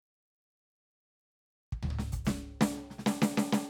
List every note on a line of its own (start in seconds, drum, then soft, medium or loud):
1.72 kick soft
1.83 floor tom loud
1.90 high tom medium
1.99 snare medium
2.12 closed hi-hat medium
2.12 kick medium
2.25 snare loud
2.25 hi-hat pedal medium
2.61 snare loud
2.74 snare soft
2.74 hi-hat pedal soft
2.90 snare soft
2.98 snare soft
3.06 snare loud
3.21 snare loud
3.21 hi-hat pedal medium
3.37 snare loud
3.52 snare loud